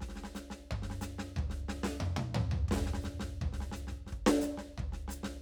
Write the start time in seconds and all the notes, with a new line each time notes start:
0.01 kick, snare
0.09 snare
0.15 snare
0.16 snare
0.24 snare
0.35 snare, hi-hat pedal
0.51 kick, snare
0.71 kick, floor tom
0.83 snare
0.90 snare
1.02 snare, hi-hat pedal
1.19 snare
1.37 kick, floor tom
1.50 snare
1.69 snare
1.84 snare
2.01 mid tom
2.17 mid tom
2.35 floor tom
2.52 floor tom
2.69 kick, snare
2.77 snare
2.83 snare
2.86 snare
2.94 snare
3.02 snare, hi-hat pedal
3.20 kick, snare
3.42 kick, floor tom
3.53 snare
3.61 snare
3.72 snare, hi-hat pedal
3.87 snare
3.92 kick
4.07 snare
4.13 kick
4.27 snare
4.42 snare, hi-hat pedal
4.58 kick, snare
4.78 kick, floor tom
4.93 snare
5.08 snare, hi-hat pedal
5.24 kick, snare